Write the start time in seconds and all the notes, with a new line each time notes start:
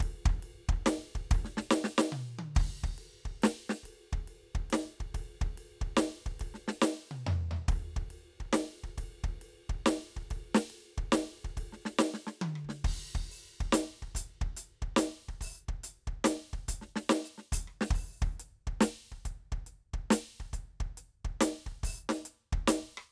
0.00 kick, ride
0.25 kick
0.43 ride
0.69 kick
0.86 snare, ride
1.15 kick
1.31 kick, ride
1.44 snare
1.57 snare
1.71 snare
1.84 snare
1.98 snare
2.12 mid tom
2.39 high tom
2.55 kick, crash
2.83 kick
2.98 ride
3.25 kick
3.42 snare, ride
3.69 snare
3.83 kick, ride
4.13 kick
4.28 ride
4.55 kick
4.70 snare, ride
5.00 kick
5.14 kick, ride
5.41 kick
5.58 ride
5.81 kick
5.97 snare, ride
6.26 kick
6.39 kick, ride
6.54 snare
6.68 snare
6.82 snare, hi-hat pedal
7.11 mid tom
7.26 floor tom
7.51 floor tom
7.68 kick, ride
7.96 kick
8.10 ride
8.40 kick
8.53 snare
8.58 ride
8.83 kick
8.98 kick, ride
9.24 kick
9.41 ride
9.69 kick
9.86 snare, ride
10.16 kick
10.30 kick, ride
10.54 snare
10.70 ride
10.98 kick
11.12 snare, ride
11.44 kick
11.57 kick, ride
11.72 snare
11.80 hi-hat pedal
11.85 snare
11.99 snare
12.04 hi-hat pedal
12.14 snare
12.27 snare
12.41 high tom
12.55 cross-stick
12.64 kick
12.69 snare
12.84 kick, crash
13.15 kick
13.31 open hi-hat
13.60 kick
13.71 closed hi-hat, kick, snare
14.02 kick
14.15 closed hi-hat, kick
14.41 kick
14.56 closed hi-hat
14.82 kick
14.96 closed hi-hat, snare
15.28 kick
15.41 open hi-hat, kick
15.68 kick
15.83 closed hi-hat
16.07 kick
16.24 closed hi-hat, snare
16.53 kick
16.68 closed hi-hat, kick
16.81 snare
16.96 snare
17.09 snare, hi-hat pedal
17.24 open hi-hat, hi-hat pedal
17.38 snare
17.52 closed hi-hat, kick
17.67 cross-stick
17.81 snare
17.90 kick
17.95 open hi-hat, snare
18.22 kick
18.39 closed hi-hat
18.67 kick
18.81 closed hi-hat, snare
19.11 kick
19.25 kick, closed hi-hat
19.52 kick
19.66 closed hi-hat
19.93 kick
20.10 closed hi-hat, snare
20.40 kick
20.53 kick, closed hi-hat
20.80 kick
20.97 closed hi-hat
21.24 kick
21.41 closed hi-hat, snare
21.66 kick
21.70 cross-stick
21.83 open hi-hat, kick
22.09 snare
22.25 closed hi-hat
22.52 kick
22.68 closed hi-hat, snare
22.97 cross-stick